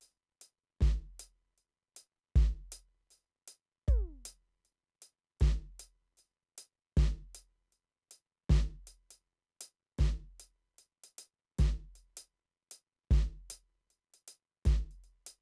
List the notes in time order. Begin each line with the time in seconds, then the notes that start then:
0.01 closed hi-hat, hi-hat pedal
0.41 closed hi-hat
0.81 kick, snare, closed hi-hat
1.19 closed hi-hat
1.58 closed hi-hat
1.96 closed hi-hat
2.36 kick, snare, closed hi-hat
2.72 open hi-hat
3.10 closed hi-hat, hi-hat pedal
3.48 closed hi-hat
3.87 kick, closed hi-hat, high tom
4.25 closed hi-hat
4.65 closed hi-hat
5.02 closed hi-hat
5.40 kick, snare, closed hi-hat
5.79 closed hi-hat
6.17 closed hi-hat, hi-hat pedal
6.58 closed hi-hat
6.97 kick, snare, closed hi-hat
7.35 closed hi-hat
7.72 closed hi-hat
8.11 closed hi-hat
8.50 kick, snare, closed hi-hat
8.87 closed hi-hat
9.11 closed hi-hat
9.61 closed hi-hat
9.98 kick, snare, closed hi-hat
10.40 closed hi-hat
10.78 closed hi-hat
11.04 closed hi-hat
11.18 closed hi-hat
11.58 kick, snare, closed hi-hat
11.95 closed hi-hat
12.17 closed hi-hat
12.71 open hi-hat
13.11 kick, snare, closed hi-hat
13.50 closed hi-hat
13.90 closed hi-hat
14.14 closed hi-hat
14.28 closed hi-hat
14.65 kick, snare, closed hi-hat
14.91 closed hi-hat
15.04 closed hi-hat
15.26 closed hi-hat